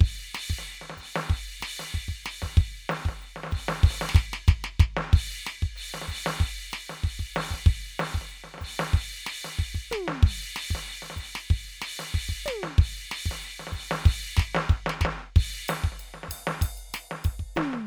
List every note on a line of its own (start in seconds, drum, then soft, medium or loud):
0.01 kick loud
0.01 crash loud
0.32 kick soft
0.32 snare loud
0.32 hi-hat pedal medium
0.32 crash loud
0.50 kick medium
0.59 snare soft
0.82 snare soft
0.90 snare medium
0.97 kick soft
0.97 hi-hat pedal medium
0.97 crash medium
1.16 snare loud
1.30 kick medium
1.30 crash medium
1.46 crash medium
1.61 kick soft
1.61 snare loud
1.61 hi-hat pedal medium
1.61 crash loud
1.80 snare medium
1.94 kick medium
1.94 crash medium
2.09 kick medium
2.09 crash soft
2.24 snare loud
2.24 hi-hat pedal medium
2.24 crash loud
2.42 kick medium
2.42 snare medium
2.57 kick loud
2.57 crash medium
2.89 snare loud
2.89 hi-hat pedal medium
2.89 crash medium
3.06 kick medium
3.06 snare medium
3.21 hi-hat pedal medium
3.21 crash soft
3.36 snare medium
3.44 snare medium
3.47 snare medium
3.51 kick medium
3.51 hi-hat pedal medium
3.51 crash medium
3.69 snare loud
3.84 kick loud
3.84 snare soft
3.84 hi-hat pedal medium
3.84 crash loud
3.91 snare soft
3.95 snare soft
4.02 snare loud
4.09 snare loud
4.15 kick loud
4.15 snare loud
4.15 hi-hat pedal medium
4.34 snare loud
4.47 kick loud
4.47 snare loud
4.47 hi-hat pedal medium
4.64 snare loud
4.80 kick loud
4.80 snare loud
4.80 hi-hat pedal soft
4.97 snare loud
5.13 kick loud
5.13 hi-hat pedal medium
5.13 crash loud
5.46 snare loud
5.46 hi-hat pedal medium
5.63 kick medium
5.76 hi-hat pedal medium
5.76 crash loud
5.94 snare medium
6.02 snare medium
6.09 kick soft
6.09 hi-hat pedal medium
6.09 crash loud
6.26 snare loud
6.40 kick medium
6.40 crash loud
6.55 crash medium
6.66 kick soft
6.71 snare loud
6.71 hi-hat pedal medium
6.71 crash medium
6.90 snare medium
7.04 kick medium
7.04 crash medium
7.18 kick medium
7.18 crash medium
7.34 snare loud
7.34 hi-hat pedal medium
7.34 crash loud
7.51 kick medium
7.51 snare soft
7.66 kick loud
7.66 crash medium
7.95 kick soft
7.99 snare loud
7.99 hi-hat pedal medium
7.99 crash medium
8.15 kick medium
8.22 snare soft
8.29 hi-hat pedal medium
8.29 crash soft
8.44 snare soft
8.54 snare soft
8.58 kick soft
8.58 snare soft
8.58 hi-hat pedal medium
8.63 crash loud
8.80 snare loud
8.94 kick loud
8.94 crash loud
9.09 crash medium
9.26 snare loud
9.26 hi-hat pedal medium
9.26 crash loud
9.45 snare medium
9.58 kick medium
9.58 crash medium
9.75 kick medium
9.91 snare loud
9.91 hi-hat pedal medium
9.91 mid tom loud
10.08 snare loud
10.23 kick loud
10.23 crash loud
10.56 snare loud
10.56 hi-hat pedal medium
10.56 crash loud
10.71 kick medium
10.75 snare medium
10.87 crash medium
11.03 snare soft
11.10 snare medium
11.17 kick soft
11.17 hi-hat pedal medium
11.17 crash medium
11.36 snare loud
11.51 kick loud
11.51 crash medium
11.64 crash soft
11.79 kick soft
11.79 snare loud
11.79 hi-hat pedal medium
11.79 crash loud
12.00 snare medium
12.14 kick medium
12.14 crash loud
12.29 kick medium
12.46 snare loud
12.46 hi-hat pedal medium
12.46 high tom loud
12.64 snare medium
12.79 kick loud
12.79 crash loud
13.11 snare loud
13.11 hi-hat pedal medium
13.11 crash loud
13.26 kick medium
13.32 snare medium
13.43 hi-hat pedal medium
13.43 crash medium
13.60 snare medium
13.67 snare medium
13.72 kick medium
13.72 hi-hat pedal medium
13.72 crash loud
13.91 snare loud
14.05 kick loud
14.05 hi-hat pedal medium
14.05 crash loud
14.37 kick loud
14.37 snare loud
14.40 snare loud
14.55 snare loud
14.57 snare loud
14.70 kick loud
14.70 snare soft
14.70 hi-hat pedal medium
14.87 snare loud
14.90 snare loud
15.01 kick medium
15.01 snare loud
15.01 hi-hat pedal soft
15.05 snare loud
15.36 kick loud
15.36 hi-hat pedal medium
15.36 crash loud
15.68 snare loud
15.68 hi-hat pedal medium
15.68 ride loud
15.84 kick medium
15.92 snare soft
15.99 hi-hat pedal medium
15.99 ride medium
16.14 snare soft
16.24 snare medium
16.29 kick soft
16.29 hi-hat pedal medium
16.29 ride loud
16.47 snare loud
16.62 kick medium
16.62 ride loud
16.78 ride medium
16.90 kick soft
16.90 hi-hat pedal medium
16.94 snare loud
16.94 ride loud
17.11 snare medium
17.25 kick medium
17.25 ride medium
17.40 kick medium
17.56 snare loud
17.56 floor tom loud
17.56 hi-hat pedal medium
17.74 snare medium